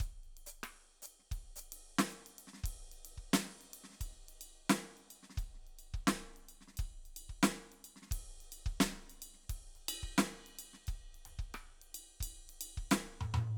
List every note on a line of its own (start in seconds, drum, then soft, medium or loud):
0.00 kick medium
0.00 hi-hat pedal soft
0.00 ride soft
0.23 ride soft
0.37 ride soft
0.46 hi-hat pedal medium
0.63 cross-stick medium
0.63 ride medium
1.02 hi-hat pedal medium
1.02 ride soft
1.19 snare soft
1.31 kick soft
1.31 ride soft
1.44 snare soft
1.56 hi-hat pedal medium
1.56 ride soft
1.72 ride medium
1.98 snare loud
1.98 ride medium
2.09 hi-hat pedal soft
2.26 ride soft
2.38 ride medium
2.47 snare soft
2.53 snare soft
2.57 snare soft
2.64 kick soft
2.64 ride medium
2.91 ride soft
3.05 ride medium
3.17 kick soft
3.33 snare loud
3.33 ride medium
3.61 ride soft
3.73 ride medium
3.84 snare soft
3.89 snare soft
3.92 snare soft
4.00 kick soft
4.00 ride bell medium
4.11 snare soft
4.14 snare soft
4.28 ride soft
4.41 ride bell medium
4.69 snare loud
4.69 ride medium
4.97 ride soft
5.10 ride bell soft
5.23 snare soft
5.30 snare soft
5.34 kick soft
5.34 snare soft
5.38 ride bell soft
5.54 snare soft
5.67 ride soft
5.79 ride bell soft
5.94 kick soft
6.07 snare loud
6.07 ride bell soft
6.36 ride soft
6.49 ride bell soft
6.61 snare soft
6.67 snare soft
6.73 snare soft
6.77 kick medium
6.77 ride bell soft
6.91 snare soft
6.96 snare soft
7.05 ride bell soft
7.16 ride bell medium
7.29 kick soft
7.43 snare loud
7.43 ride bell medium
7.72 snare soft
7.72 ride soft
7.84 ride bell soft
7.96 snare soft
8.02 snare soft
8.06 snare soft
8.11 kick soft
8.11 ride medium
8.40 ride soft
8.52 ride bell medium
8.66 kick medium
8.80 snare loud
8.80 ride bell soft
9.10 ride bell soft
9.22 ride bell medium
9.34 snare soft
9.38 snare soft
9.42 snare soft
9.49 kick soft
9.49 ride medium
9.62 snare soft
9.75 floor tom soft
9.75 ride soft
9.88 ride bell loud
10.03 kick soft
10.18 snare loud
10.18 ride soft
10.46 ride soft
10.59 ride bell medium
10.73 snare soft
10.87 kick soft
10.87 ride bell soft
11.03 snare soft
11.14 ride soft
11.25 snare soft
11.25 ride soft
11.25 floor tom soft
11.39 kick soft
11.54 cross-stick medium
11.54 floor tom soft
11.54 ride soft
11.81 ride soft
11.94 ride bell medium
12.20 kick soft
12.20 ride bell medium
12.49 ride soft
12.61 ride bell medium
12.77 kick soft
12.91 snare loud
12.91 ride bell medium
13.21 mid tom loud
13.34 mid tom loud